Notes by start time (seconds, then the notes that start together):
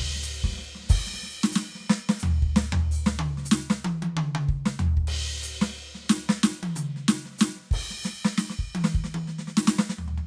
0.17 snare
0.24 hi-hat pedal
0.45 kick, snare
0.50 snare
0.53 snare
0.59 snare
0.76 snare
0.81 snare
0.84 snare
0.87 kick, snare, hi-hat pedal, crash
1.08 snare
1.14 snare
1.19 snare
1.24 snare
1.45 snare
1.53 snare, hi-hat pedal
1.76 snare
1.81 snare
1.86 snare
1.91 snare
2.10 snare
2.20 hi-hat pedal
2.24 floor tom
2.43 kick
2.57 snare
2.74 floor tom
2.92 hi-hat pedal
3.07 snare
3.20 mid tom
3.39 snare
3.43 snare
3.46 snare, hi-hat pedal
3.53 snare
3.71 snare
3.86 high tom
4.03 high tom
4.18 mid tom
4.36 mid tom
4.50 kick
4.67 snare
4.81 floor tom
4.98 kick
5.09 ride
5.44 hi-hat pedal
5.63 snare
5.82 snare
5.96 snare
6.01 snare
6.05 snare
6.09 snare, hi-hat pedal
6.30 snare
6.44 snare
6.64 high tom
6.77 hi-hat pedal, mid tom
6.97 snare
7.01 snare
7.09 snare
7.26 snare
7.32 snare
7.36 snare, hi-hat pedal
7.42 snare
7.56 snare
7.61 snare
7.65 snare
7.70 kick, snare
7.74 crash
7.92 snare
8.04 snare, hi-hat pedal
8.26 snare
8.39 snare
8.51 snare
8.60 kick
8.76 high tom
8.85 snare
8.96 kick
9.05 snare
9.15 high tom
9.29 snare
9.40 snare
9.49 snare
9.58 snare
9.69 snare
9.80 snare
9.91 snare
10.00 floor tom
10.09 floor tom
10.19 floor tom